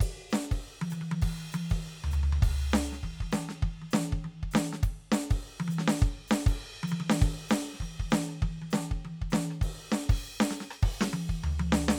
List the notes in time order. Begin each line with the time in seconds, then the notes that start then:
0.01 kick, crash
0.31 snare, hi-hat pedal
0.44 snare
0.52 kick, crash
0.82 high tom
0.91 hi-hat pedal, high tom
1.02 high tom
1.12 high tom
1.22 kick, crash
1.53 hi-hat pedal, high tom
1.71 kick, crash
2.04 floor tom
2.12 floor tom, hi-hat pedal
2.24 floor tom
2.33 floor tom
2.43 kick, crash
2.72 snare, hi-hat pedal
2.93 snare
3.04 kick, high tom
3.21 kick, high tom
3.32 snare, hi-hat pedal, high tom
3.49 snare
3.63 kick, high tom
3.82 high tom
3.91 snare, hi-hat pedal, high tom
4.13 kick
4.25 high tom
4.43 kick
4.52 snare, hi-hat pedal, high tom
4.73 snare
4.83 kick, ride
5.12 snare, hi-hat pedal
5.31 kick, crash
5.60 high tom
5.68 hi-hat pedal, high tom
5.79 snare
5.88 snare
6.00 kick, ride
6.28 snare, hi-hat pedal
6.47 kick, ride
6.84 high tom
6.88 hi-hat pedal
6.92 high tom
7.00 high tom
7.10 snare
7.22 kick, crash
7.49 snare, hi-hat pedal, crash
7.74 snare
7.81 kick, high tom
8.00 kick, high tom
8.11 snare, hi-hat pedal, high tom
8.29 cross-stick
8.43 kick, high tom
8.62 high tom
8.71 snare, hi-hat pedal, high tom
8.92 kick
9.05 high tom
9.22 kick
9.31 snare, hi-hat pedal, high tom
9.51 cross-stick
9.62 kick, crash
9.92 snare
10.10 kick, crash
10.41 snare
10.51 snare
10.61 snare
10.71 cross-stick
10.83 kick, crash
11.01 snare
11.14 high tom
11.30 kick
11.44 floor tom
11.60 high tom
11.73 snare
11.89 snare